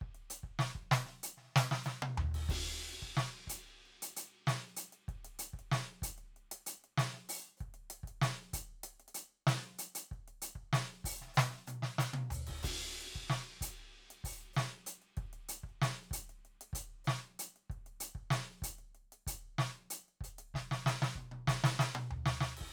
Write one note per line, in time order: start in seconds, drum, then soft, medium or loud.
0.01 kick soft
0.01 closed hi-hat soft
0.15 closed hi-hat soft
0.31 closed hi-hat loud
0.44 kick soft
0.59 snare loud
0.76 kick soft
0.92 snare loud
1.06 snare soft
1.24 closed hi-hat loud
1.38 snare soft
1.43 snare soft
1.47 snare soft
1.50 snare soft
1.53 snare soft
1.56 snare loud
1.72 snare loud
1.84 snare medium
1.84 hi-hat pedal medium
2.03 high tom loud
2.18 floor tom loud
2.32 kick soft
2.32 crash medium
2.49 kick medium
2.49 ride loud
2.67 snare soft
2.89 closed hi-hat soft
3.03 kick soft
3.17 snare loud
3.48 closed hi-hat loud
3.48 kick soft
3.66 closed hi-hat soft
3.86 closed hi-hat soft
4.03 closed hi-hat loud
4.17 closed hi-hat loud
4.47 snare loud
4.47 crash soft
4.77 closed hi-hat loud
4.93 closed hi-hat medium
5.09 kick medium
5.09 closed hi-hat soft
5.25 closed hi-hat medium
5.39 closed hi-hat loud
5.54 kick soft
5.59 closed hi-hat soft
5.72 snare loud
6.03 closed hi-hat loud
6.03 kick medium
6.18 closed hi-hat soft
6.37 closed hi-hat soft
6.52 closed hi-hat loud
6.67 closed hi-hat loud
6.84 closed hi-hat soft
6.98 snare loud
7.14 snare soft
7.29 open hi-hat loud
7.58 kick soft
7.58 closed hi-hat soft
7.58 hi-hat pedal soft
7.74 closed hi-hat soft
7.91 closed hi-hat loud
8.04 kick soft
8.08 closed hi-hat medium
8.22 snare loud
8.54 closed hi-hat loud
8.54 kick soft
8.84 closed hi-hat loud
9.00 closed hi-hat soft
9.08 closed hi-hat medium
9.15 closed hi-hat loud
9.47 snare loud
9.64 closed hi-hat soft
9.79 closed hi-hat loud
9.96 closed hi-hat loud
10.12 kick soft
10.12 closed hi-hat soft
10.28 closed hi-hat soft
10.42 closed hi-hat loud
10.56 kick soft
10.73 snare loud
11.05 open hi-hat loud
11.05 kick medium
11.22 snare soft
11.28 snare soft
11.32 snare soft
11.32 hi-hat pedal medium
11.38 snare loud
11.50 snare soft
11.56 snare soft
11.68 hi-hat pedal loud
11.68 high tom medium
11.83 snare medium
11.99 snare loud
11.99 hi-hat pedal loud
12.14 high tom loud
12.31 floor tom medium
12.31 hi-hat pedal loud
12.47 kick soft
12.47 crash medium
12.64 kick medium
12.64 hi-hat pedal loud
12.64 ride loud
13.01 closed hi-hat soft
13.16 kick soft
13.30 snare loud
13.62 closed hi-hat loud
13.62 kick medium
13.78 closed hi-hat soft
13.98 closed hi-hat soft
14.11 closed hi-hat medium
14.24 open hi-hat loud
14.24 kick soft
14.54 snare loud
14.54 hi-hat pedal soft
14.87 closed hi-hat loud
15.02 closed hi-hat soft
15.17 kick medium
15.17 closed hi-hat soft
15.33 closed hi-hat soft
15.49 closed hi-hat loud
15.64 kick soft
15.70 closed hi-hat soft
15.82 snare loud
16.11 closed hi-hat loud
16.11 kick medium
16.30 closed hi-hat soft
16.45 closed hi-hat soft
16.61 closed hi-hat medium
16.73 closed hi-hat loud
16.73 kick medium
17.05 snare loud
17.05 hi-hat pedal medium
17.40 closed hi-hat loud
17.56 closed hi-hat soft
17.70 kick soft
17.70 closed hi-hat soft
17.87 closed hi-hat soft
18.01 closed hi-hat loud
18.15 kick soft
18.31 snare loud
18.63 closed hi-hat loud
18.63 kick soft
18.79 closed hi-hat soft
18.95 closed hi-hat soft
19.13 closed hi-hat medium
19.27 closed hi-hat loud
19.27 kick medium
19.59 snare loud
19.91 closed hi-hat loud
20.09 closed hi-hat soft
20.21 closed hi-hat medium
20.21 kick soft
20.39 closed hi-hat medium
20.55 kick soft
20.55 snare medium
20.72 snare medium
20.85 kick soft
20.85 snare loud
21.03 snare loud
21.16 kick soft
21.16 high tom medium
21.32 high tom medium
21.48 kick soft
21.48 snare loud
21.64 snare loud
21.80 snare loud
21.96 high tom loud
22.11 floor tom medium
22.26 snare loud
22.41 snare loud
22.57 crash medium
22.61 kick soft